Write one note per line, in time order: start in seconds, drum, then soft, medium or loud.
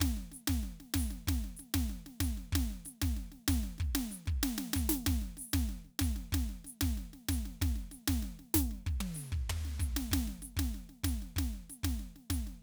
0.01 kick medium
0.01 snare medium
0.17 snare soft
0.32 snare soft
0.32 hi-hat pedal medium
0.48 kick soft
0.48 snare medium
0.64 snare soft
0.81 snare soft
0.94 kick soft
0.94 snare medium
0.94 hi-hat pedal medium
1.11 snare soft
1.28 kick medium
1.28 snare medium
1.44 snare soft
1.57 snare soft
1.57 hi-hat pedal medium
1.74 kick soft
1.74 snare medium
1.90 snare soft
2.07 snare soft
2.21 kick soft
2.21 snare medium
2.21 hi-hat pedal medium
2.38 snare soft
2.53 kick medium
2.53 snare medium
2.71 snare soft
2.86 snare soft
2.86 hi-hat pedal medium
3.02 kick medium
3.02 snare medium
3.17 snare soft
3.32 snare soft
3.48 kick medium
3.48 snare medium
3.48 hi-hat pedal medium
3.64 snare soft
3.79 kick soft
3.79 snare soft
3.96 snare medium
4.11 snare soft
4.11 hi-hat pedal medium
4.26 kick medium
4.26 snare soft
4.44 snare medium
4.59 snare medium
4.74 kick soft
4.74 snare medium
4.74 hi-hat pedal medium
4.90 snare medium
5.07 kick medium
5.07 snare medium
5.22 snare soft
5.37 snare soft
5.37 hi-hat pedal medium
5.54 kick medium
5.54 snare medium
5.69 snare soft
5.85 snare soft
6.00 kick medium
6.00 snare medium
6.00 hi-hat pedal medium
6.17 snare soft
6.33 kick medium
6.33 snare medium
6.50 snare soft
6.65 snare soft
6.65 hi-hat pedal medium
6.82 kick medium
6.82 snare medium
6.98 snare soft
7.14 snare soft
7.29 kick soft
7.29 snare medium
7.29 hi-hat pedal medium
7.46 snare soft
7.62 kick medium
7.62 snare medium
7.76 snare soft
7.92 snare soft
7.92 hi-hat pedal medium
8.08 kick soft
8.08 snare medium
8.23 snare soft
8.40 snare soft
8.55 kick medium
8.55 snare medium
8.55 hi-hat pedal medium
8.72 snare soft
8.87 kick soft
8.87 snare soft
9.01 open hi-hat soft
9.01 high tom medium
9.15 snare soft
9.15 hi-hat pedal medium
9.33 kick soft
9.33 snare soft
9.50 floor tom loud
9.65 snare soft
9.80 kick soft
9.80 snare soft
9.80 hi-hat pedal medium
9.97 snare medium
10.12 kick soft
10.12 snare medium
10.28 snare soft
10.43 snare soft
10.43 hi-hat pedal medium
10.57 kick soft
10.57 snare medium
10.75 snare soft
10.90 snare soft
11.04 kick soft
11.04 snare medium
11.04 hi-hat pedal medium
11.23 snare soft
11.37 kick soft
11.37 snare medium
11.54 snare soft
11.70 snare soft
11.70 hi-hat pedal medium
11.84 kick soft
11.84 snare medium
12.00 snare soft
12.16 snare soft
12.31 kick soft
12.31 snare medium
12.31 hi-hat pedal medium
12.47 snare soft